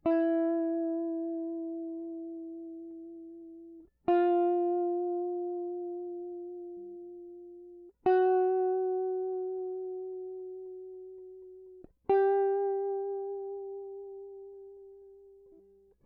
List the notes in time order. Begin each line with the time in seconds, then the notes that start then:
0.06 E4
4.09 F4
8.07 F#4
12.09 G4